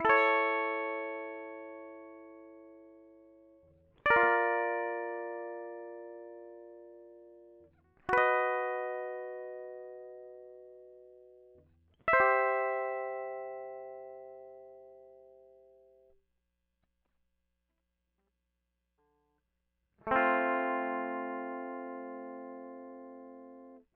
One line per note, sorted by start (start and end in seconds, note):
0.00 3.66 E4
0.05 3.22 A4
0.09 3.72 C#5
4.06 7.70 D5
4.10 7.68 A#4
4.16 7.68 F4
4.24 4.30 B3
8.03 8.08 F#5
8.09 11.61 F#4
8.13 11.63 B4
8.18 11.44 D#5
12.08 15.59 E5
12.13 16.13 C5
12.20 16.20 G4
20.07 23.83 A3
20.11 23.83 C4
20.16 23.78 F4